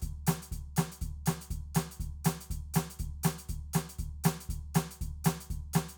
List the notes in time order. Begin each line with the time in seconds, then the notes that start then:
0.03 closed hi-hat, kick
0.28 closed hi-hat, snare
0.43 closed hi-hat
0.53 closed hi-hat, kick
0.78 closed hi-hat, snare
0.93 closed hi-hat
1.02 closed hi-hat, kick
1.27 closed hi-hat, snare
1.42 closed hi-hat
1.52 closed hi-hat, kick
1.76 closed hi-hat, snare
1.92 closed hi-hat
2.01 closed hi-hat, kick
2.26 closed hi-hat, snare
2.42 closed hi-hat
2.51 closed hi-hat, kick
2.75 closed hi-hat, snare
2.91 closed hi-hat
3.00 closed hi-hat, kick
3.24 closed hi-hat, snare
3.39 closed hi-hat
3.50 closed hi-hat, kick
3.74 closed hi-hat, snare
3.90 closed hi-hat
4.00 closed hi-hat, kick
4.25 closed hi-hat, snare
4.41 closed hi-hat
4.50 closed hi-hat, kick
4.76 closed hi-hat, snare
4.92 closed hi-hat
5.02 closed hi-hat, kick
5.26 closed hi-hat, snare
5.41 closed hi-hat
5.51 closed hi-hat, kick
5.74 closed hi-hat, snare
5.90 closed hi-hat